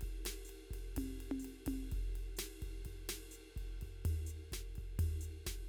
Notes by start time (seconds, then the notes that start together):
0.01 kick, ride
0.08 kick
0.25 snare, ride
0.45 hi-hat pedal
0.49 ride
0.71 kick, ride
0.97 kick, high tom, ride
1.03 kick
1.20 ride
1.31 high tom
1.40 hi-hat pedal
1.45 ride
1.66 kick, high tom, ride
1.72 kick
1.92 kick, ride
1.98 kick
2.16 ride
2.37 snare, hi-hat pedal, ride
2.62 kick, snare, ride
2.68 kick
2.85 kick, ride
2.91 kick
3.09 snare, ride
3.31 hi-hat pedal, ride
3.56 kick, ride
3.62 kick
3.81 kick, ride
3.88 kick
4.05 floor tom, ride
4.26 hi-hat pedal, ride
4.52 kick, snare, ride
4.75 kick, ride
4.99 floor tom, ride
5.21 hi-hat pedal, ride
5.47 kick, snare, ride
5.52 kick